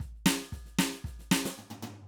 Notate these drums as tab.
SD |oooooooooooo----|
FT |------------ooo-|
BD |o---o---o-------|